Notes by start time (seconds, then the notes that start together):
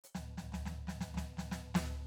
0.04 hi-hat pedal
0.15 snare, floor tom
0.38 snare, floor tom
0.52 snare, floor tom
0.66 snare, floor tom
0.88 snare, floor tom
1.01 snare, floor tom
1.15 snare, floor tom
1.38 snare, floor tom
1.52 snare, floor tom
1.75 snare, floor tom